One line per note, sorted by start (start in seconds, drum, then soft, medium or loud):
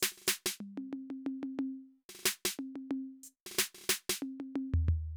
0.00 snare loud
0.00 hi-hat pedal medium
0.12 snare soft
0.17 snare soft
0.22 snare soft
0.25 snare soft
0.25 hi-hat pedal loud
0.28 snare loud
0.46 snare loud
0.60 mid tom medium
0.77 high tom medium
0.93 high tom loud
1.10 high tom medium
1.26 high tom loud
1.43 high tom loud
1.59 high tom loud
2.09 snare soft
2.15 snare soft
2.19 snare soft
2.23 snare soft
2.25 snare loud
2.45 snare loud
2.59 high tom loud
2.76 high tom medium
2.91 high tom loud
3.23 hi-hat pedal medium
3.46 snare medium
3.51 snare soft
3.55 snare soft
3.58 snare soft
3.58 snare loud
3.74 snare soft
3.78 snare soft
3.81 snare soft
3.84 snare soft
3.89 snare loud
4.09 snare loud
4.22 high tom loud
4.40 high tom medium
4.56 high tom loud
4.74 floor tom loud
4.88 floor tom loud